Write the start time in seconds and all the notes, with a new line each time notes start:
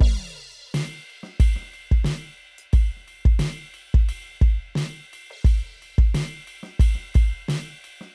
0.01 kick, crash
0.52 hi-hat pedal
0.75 snare, hi-hat pedal, ride
1.11 ride bell
1.24 snare
1.41 kick, ride bell
1.57 snare
1.63 snare
1.74 ride bell
1.92 kick, snare
2.05 snare, ride bell
2.59 closed hi-hat
2.74 kick, ride bell
2.97 snare
3.09 ride bell
3.26 kick
3.40 snare, ride bell
3.75 ride bell
3.95 kick
4.10 ride
4.42 kick
4.76 snare, ride bell
5.14 ride
5.31 crash
5.45 kick, ride bell
5.83 ride
5.99 kick
6.15 snare, ride bell
6.48 ride
6.64 snare
6.80 kick, ride
6.96 snare
7.04 snare
7.15 kick, ride
7.49 snare, ride
7.85 ride
8.02 snare